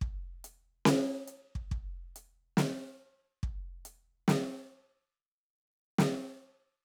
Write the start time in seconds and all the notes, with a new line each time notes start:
0.02 kick
0.45 closed hi-hat
0.86 snare
1.28 closed hi-hat
1.56 kick
1.72 kick
2.16 closed hi-hat
2.58 snare
3.43 kick
3.86 closed hi-hat
4.28 snare
5.99 snare